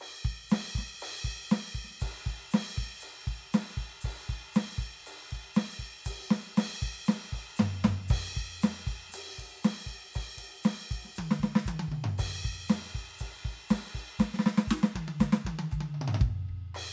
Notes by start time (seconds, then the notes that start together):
0.01 crash
0.25 kick
0.49 snare, hi-hat pedal, crash
0.74 kick, snare, hi-hat pedal
1.00 hi-hat pedal, crash
1.25 kick, crash
1.49 snare, hi-hat pedal, crash
1.75 kick, crash
1.84 snare
1.91 snare
1.95 snare
2.00 kick, hi-hat pedal, crash
2.21 hi-hat pedal
2.27 kick, crash
2.51 snare, hi-hat pedal, crash
2.74 kick, hi-hat pedal, crash
2.83 snare
2.86 snare
2.93 snare
3.01 hi-hat pedal, crash
3.24 hi-hat pedal
3.28 kick, crash
3.53 snare, hi-hat pedal, crash
3.78 kick, crash
4.01 kick, hi-hat pedal
4.05 crash
4.30 kick, crash
4.54 snare, hi-hat pedal, crash
4.79 kick
4.83 crash
5.06 hi-hat pedal, crash
5.31 kick, crash
5.54 snare, hi-hat pedal, crash
5.80 kick, crash
6.05 kick, hi-hat pedal, crash
6.31 snare, crash
6.57 snare, hi-hat pedal, crash
6.83 kick, crash
7.06 snare, hi-hat pedal
7.10 crash
7.33 kick, crash
7.56 snare, floor tom, hi-hat pedal
7.85 kick, snare, floor tom
8.08 kick, hi-hat pedal, crash
8.37 kick
8.62 snare, hi-hat pedal, crash
8.87 kick, crash
9.09 snare, hi-hat pedal
9.14 crash
9.39 kick, crash
9.64 snare, hi-hat pedal, crash
9.87 kick, crash
10.14 kick, hi-hat pedal, crash
10.38 kick, crash
10.63 snare, hi-hat pedal, crash
10.91 kick, crash
11.05 snare
11.16 kick, hi-hat pedal, high tom
11.31 snare
11.40 kick, snare
11.56 snare
11.66 kick, hi-hat pedal, high tom
11.80 high tom
11.88 kick, mid tom
12.04 floor tom
12.19 kick, hi-hat pedal, crash
12.45 kick, crash
12.68 snare, hi-hat pedal, crash
12.95 kick, crash
13.18 kick, hi-hat pedal, crash
13.45 kick, crash
13.69 kick, snare, hi-hat pedal, crash
13.95 kick, crash
14.19 kick, snare, hi-hat pedal
14.34 snare
14.40 snare
14.47 snare
14.58 snare
14.68 kick, snare, hi-hat pedal
14.84 snare
14.96 kick, high tom
15.08 high tom
15.20 kick, snare, hi-hat pedal
15.33 snare
15.45 kick, high tom
15.59 high tom
15.71 kick, hi-hat pedal, high tom
15.81 high tom
15.87 kick
15.95 mid tom
16.02 mid tom
16.08 floor tom
16.14 floor tom, ride
16.21 kick
16.49 kick
16.75 cross-stick, crash